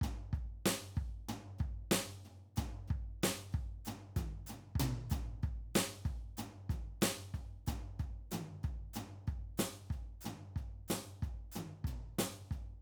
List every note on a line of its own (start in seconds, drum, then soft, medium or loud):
0.00 kick medium
0.00 floor tom loud
0.33 kick medium
0.33 floor tom soft
0.66 snare loud
0.66 floor tom loud
0.96 kick medium
0.96 floor tom soft
1.28 floor tom loud
1.58 kick medium
1.58 floor tom soft
1.91 snare loud
1.91 floor tom loud
2.25 floor tom soft
2.56 kick soft
2.56 floor tom loud
2.56 hi-hat pedal medium
2.87 kick medium
2.87 floor tom soft
3.23 snare loud
3.23 floor tom loud
3.23 hi-hat pedal medium
3.52 kick medium
3.52 floor tom soft
3.85 floor tom loud
3.85 hi-hat pedal medium
4.16 kick medium
4.16 floor tom medium
4.16 high tom medium
4.46 floor tom medium
4.46 hi-hat pedal medium
4.51 mid tom soft
4.75 kick medium
4.79 floor tom medium
4.79 mid tom loud
5.10 kick medium
5.10 floor tom medium
5.10 hi-hat pedal medium
5.43 kick medium
5.43 floor tom soft
5.74 snare loud
5.74 floor tom loud
5.74 hi-hat pedal medium
6.05 kick medium
6.05 floor tom soft
6.37 floor tom loud
6.37 hi-hat pedal medium
6.69 kick medium
6.69 floor tom soft
6.69 high tom medium
7.01 snare loud
7.01 floor tom loud
7.01 hi-hat pedal medium
7.34 kick soft
7.34 floor tom soft
7.66 kick soft
7.66 floor tom loud
7.66 hi-hat pedal medium
7.99 kick soft
7.99 floor tom soft
8.31 floor tom loud
8.31 hi-hat pedal medium
8.31 high tom loud
8.63 kick medium
8.63 floor tom soft
8.93 floor tom loud
8.93 hi-hat pedal medium
9.27 kick medium
9.27 floor tom soft
9.57 snare loud
9.57 floor tom medium
9.57 hi-hat pedal medium
9.90 kick soft
9.90 floor tom soft
10.21 hi-hat pedal medium
10.21 high tom medium
10.25 floor tom loud
10.56 kick soft
10.56 floor tom soft
10.88 snare medium
10.88 floor tom loud
10.88 hi-hat pedal medium
11.22 kick soft
11.22 floor tom soft
11.51 floor tom medium
11.51 hi-hat pedal medium
11.56 high tom medium
11.84 kick soft
11.84 mid tom soft
11.89 floor tom soft
12.18 snare loud
12.18 floor tom loud
12.18 hi-hat pedal medium
12.51 kick soft
12.51 floor tom soft